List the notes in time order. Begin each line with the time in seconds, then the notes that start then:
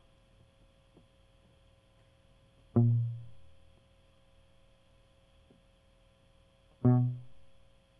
2.78 A#2
6.87 B2